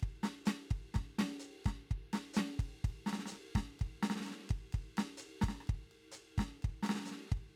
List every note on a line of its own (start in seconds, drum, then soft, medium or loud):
0.01 kick soft
0.01 ride soft
0.24 snare medium
0.24 ride soft
0.46 snare medium
0.46 hi-hat pedal medium
0.46 ride medium
0.72 kick soft
0.72 ride soft
0.95 kick soft
0.95 snare soft
0.95 ride soft
1.02 kick soft
1.19 snare medium
1.19 ride medium
1.40 hi-hat pedal medium
1.40 ride soft
1.66 kick soft
1.66 snare medium
1.66 ride soft
1.91 kick soft
1.91 ride soft
2.14 snare medium
2.14 ride medium
2.35 snare medium
2.35 hi-hat pedal medium
2.35 ride medium
2.60 kick soft
2.60 ride medium
2.85 kick soft
2.85 ride medium
2.90 kick soft
3.07 snare medium
3.07 ride medium
3.14 snare soft
3.20 snare soft
3.27 snare soft
3.27 hi-hat pedal medium
3.33 snare soft
3.33 ride soft
3.56 kick soft
3.56 snare medium
3.56 ride medium
3.61 kick soft
3.80 kick soft
3.80 ride soft
3.87 kick soft
4.04 snare medium
4.04 ride medium
4.11 snare medium
4.17 snare soft
4.21 snare soft
4.21 hi-hat pedal soft
4.26 snare soft
4.26 ride soft
4.31 snare soft
4.36 snare soft
4.41 snare soft
4.45 snare soft
4.48 snare soft
4.48 ride soft
4.51 kick soft
4.51 snare soft
4.59 snare soft
4.62 snare soft
4.64 snare soft
4.67 snare soft
4.74 kick soft
4.74 ride soft
4.98 snare medium
4.98 ride medium
5.18 hi-hat pedal medium
5.18 ride soft
5.42 kick soft
5.42 snare medium
5.42 ride medium
5.49 snare soft
5.55 cross-stick soft
5.61 cross-stick soft
5.67 kick soft
5.67 snare soft
5.67 ride soft
5.72 kick soft
5.72 snare soft
5.77 snare soft
5.92 ride soft
6.13 hi-hat pedal medium
6.13 ride soft
6.39 kick soft
6.39 snare medium
6.39 ride soft
6.63 kick soft
6.63 ride soft
6.70 kick soft
6.84 snare medium
6.84 ride medium
6.90 snare medium
6.95 snare soft
7.01 snare soft
7.06 snare soft
7.06 hi-hat pedal soft
7.10 snare soft
7.10 ride soft
7.17 snare soft
7.22 snare soft
7.26 snare soft
7.30 kick soft
7.30 snare soft
7.33 snare soft
7.33 ride soft
7.38 kick soft
7.38 snare soft
7.42 snare soft